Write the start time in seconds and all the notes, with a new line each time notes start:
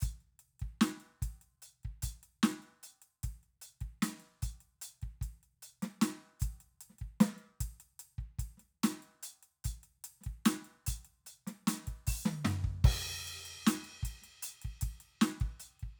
0.01 closed hi-hat, kick, hi-hat pedal
0.21 closed hi-hat
0.39 closed hi-hat
0.60 kick, closed hi-hat
0.81 closed hi-hat, snare
1.00 closed hi-hat
1.22 kick, closed hi-hat
1.42 closed hi-hat
1.62 closed hi-hat
1.84 kick, closed hi-hat
2.02 closed hi-hat, kick
2.23 closed hi-hat
2.43 closed hi-hat, snare
2.62 closed hi-hat
2.83 closed hi-hat
3.02 closed hi-hat
3.23 kick, closed hi-hat
3.43 closed hi-hat
3.62 closed hi-hat
3.81 kick, closed hi-hat
4.02 closed hi-hat, snare
4.20 closed hi-hat
4.42 closed hi-hat, kick
4.61 closed hi-hat
4.82 closed hi-hat
5.02 kick, closed hi-hat
5.22 kick, closed hi-hat
5.43 closed hi-hat
5.62 closed hi-hat
5.83 snare, closed hi-hat
6.02 closed hi-hat, snare
6.40 kick, closed hi-hat, hi-hat pedal
6.61 closed hi-hat
6.81 closed hi-hat
6.90 snare
6.99 kick, closed hi-hat
7.21 closed hi-hat, snare
7.38 closed hi-hat
7.61 kick, closed hi-hat
7.80 closed hi-hat
8.00 closed hi-hat
8.18 kick, closed hi-hat
8.39 kick, closed hi-hat
8.57 snare, closed hi-hat
8.84 closed hi-hat, snare
9.03 closed hi-hat
9.23 closed hi-hat
9.43 closed hi-hat
9.64 closed hi-hat, kick
9.83 closed hi-hat
10.04 closed hi-hat
10.21 snare, closed hi-hat
10.27 kick
10.46 closed hi-hat, snare
10.65 closed hi-hat
10.87 closed hi-hat, kick
11.05 closed hi-hat
11.25 closed hi-hat, snare
11.47 snare, closed hi-hat
11.67 closed hi-hat, snare
11.87 kick, closed hi-hat
12.06 open hi-hat, kick, snare
12.26 snare, high tom
12.45 snare, floor tom
12.64 kick
12.84 kick, crash
13.28 closed hi-hat
13.46 closed hi-hat
13.67 closed hi-hat, snare
13.85 closed hi-hat
14.03 kick, closed hi-hat
14.22 snare, closed hi-hat
14.43 closed hi-hat
14.62 kick, closed hi-hat
14.81 kick, closed hi-hat
15.00 closed hi-hat
15.22 closed hi-hat, snare
15.40 kick, closed hi-hat
15.60 closed hi-hat
15.80 kick, closed hi-hat